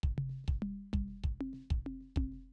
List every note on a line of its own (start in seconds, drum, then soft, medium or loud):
0.03 kick medium
0.18 floor tom medium
0.29 snare soft
0.44 kick soft
0.44 snare soft
0.62 mid tom medium
0.93 kick soft
0.93 mid tom medium
1.08 snare soft
1.24 kick soft
1.41 high tom medium
1.53 snare soft
1.70 kick medium
1.86 high tom medium
2.01 snare soft
2.16 kick soft
2.16 high tom medium
2.32 snare soft